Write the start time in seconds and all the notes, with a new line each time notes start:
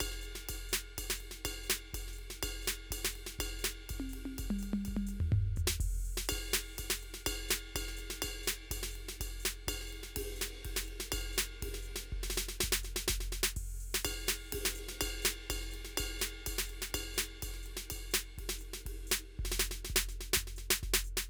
0.01 kick, ride bell
0.12 snare
0.22 hi-hat pedal, ride
0.36 snare
0.49 kick, ride bell
0.56 kick
0.70 hi-hat pedal
0.74 snare
0.99 kick, ride bell
1.04 kick
1.11 snare
1.17 hi-hat pedal
1.21 ride
1.32 snare
1.46 kick, ride bell
1.52 kick
1.64 hi-hat pedal
1.70 snare
1.94 kick, ride bell
2.00 kick
2.08 snare
2.14 hi-hat pedal
2.19 ride
2.31 snare
2.43 kick, ride bell
2.63 hi-hat pedal
2.68 snare
2.91 kick, ride bell
2.97 kick
3.05 snare
3.10 hi-hat pedal
3.16 ride
3.27 snare
3.40 kick, ride bell
3.45 kick
3.60 hi-hat pedal
3.65 snare
3.90 kick, ride bell
3.97 kick, high tom
4.10 hi-hat pedal
4.14 ride
4.26 high tom
4.39 kick, ride bell
4.46 kick
4.51 mid tom
4.59 hi-hat pedal
4.63 ride bell
4.74 mid tom
4.86 kick, ride bell
4.95 kick, mid tom
5.07 hi-hat pedal, ride
5.21 floor tom
5.33 kick, floor tom
5.42 kick
5.57 floor tom, hi-hat pedal
5.68 snare
5.81 kick, crash
5.86 kick
5.93 kick
6.06 hi-hat pedal
6.18 snare
6.30 kick, ride bell
6.39 kick
6.52 snare, hi-hat pedal
6.79 kick, ride bell
6.91 snare
7.00 hi-hat pedal, ride
7.14 snare
7.27 kick, ride bell
7.33 kick
7.49 snare, hi-hat pedal
7.76 kick, ride bell
7.82 kick
7.89 snare
7.97 hi-hat pedal, ride
8.11 snare
8.23 kick, ride bell
8.30 kick
8.44 hi-hat pedal
8.48 snare
8.72 kick, ride bell
8.77 kick
8.84 snare
8.92 hi-hat pedal
8.96 ride
9.09 snare
9.21 kick, ride bell
9.27 kick
9.41 hi-hat pedal
9.46 snare
9.68 kick, ride bell
9.74 kick
9.82 snare
9.88 hi-hat pedal
9.93 ride
10.04 snare
10.17 kick, ride
10.37 hi-hat pedal
10.42 snare
10.65 kick, ride
10.71 kick
10.77 snare
10.85 hi-hat pedal, ride
11.01 snare
11.13 kick, ride bell
11.20 kick, ride
11.33 hi-hat pedal
11.38 snare
11.63 kick, ride
11.69 kick
11.75 snare
11.83 hi-hat pedal
11.96 snare
12.13 kick, snare
12.19 kick
12.24 snare
12.31 snare, hi-hat pedal
12.38 snare
12.49 snare
12.61 kick, snare
12.71 kick, snare
12.84 snare, hi-hat pedal
12.97 snare
13.08 kick, snare
13.17 kick
13.21 snare
13.33 snare, hi-hat pedal
13.44 snare
13.57 kick, crash
13.64 kick
13.81 hi-hat pedal
13.95 snare
14.05 kick, ride bell
14.12 kick
14.28 snare, hi-hat pedal
14.53 kick, ride
14.66 snare
14.76 hi-hat pedal, ride
14.89 snare
15.01 kick, ride bell
15.09 kick
15.23 snare, hi-hat pedal
15.45 hi-hat pedal
15.51 kick, ride bell
15.57 kick
15.62 snare
15.72 hi-hat pedal, ride
15.85 snare
15.98 kick, ride bell
16.06 kick
16.20 snare, hi-hat pedal
16.47 kick, ride bell
16.59 snare
16.67 hi-hat pedal, ride
16.82 snare
16.95 kick, ride bell
17.01 kick
17.15 snare, hi-hat pedal
17.43 kick, ride bell
17.50 kick
17.54 snare
17.64 hi-hat pedal, ride
17.77 snare
17.91 kick, ride bell
18.12 snare, hi-hat pedal
18.39 kick, ride
18.50 snare
18.59 hi-hat pedal, ride
18.74 snare
18.86 kick, ride
18.92 kick
19.08 hi-hat pedal
19.12 snare
19.40 kick
19.46 kick, snare
19.52 snare
19.60 snare, hi-hat pedal
19.72 snare
19.85 snare
19.91 kick
19.97 snare
20.09 snare, hi-hat pedal
20.21 snare
20.34 kick, snare
20.48 snare
20.57 snare, hi-hat pedal
20.71 snare
20.84 kick, snare
20.90 kick
20.94 snare
21.05 hi-hat pedal
21.18 snare